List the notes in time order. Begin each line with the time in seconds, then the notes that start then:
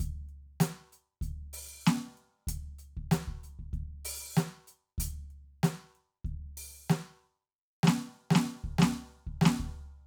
0.00 closed hi-hat, kick
0.29 closed hi-hat
0.61 closed hi-hat, snare
0.93 closed hi-hat
1.22 closed hi-hat, kick
1.54 open hi-hat
1.86 closed hi-hat, snare, hi-hat pedal
2.18 closed hi-hat
2.48 kick, closed hi-hat
2.79 closed hi-hat
2.97 kick
3.12 closed hi-hat, snare
3.28 kick
3.44 closed hi-hat
3.60 kick
3.74 kick, closed hi-hat
4.05 open hi-hat
4.37 closed hi-hat, snare, hi-hat pedal
4.68 closed hi-hat
4.99 closed hi-hat, kick
5.31 closed hi-hat
5.64 closed hi-hat, snare
5.96 closed hi-hat
6.25 kick, closed hi-hat
6.58 open hi-hat
6.90 open hi-hat, snare, hi-hat pedal
7.84 snare
7.88 snare
8.31 snare
8.36 snare
8.64 kick
8.79 snare
8.83 snare
9.27 kick
9.42 snare
9.46 snare
9.60 kick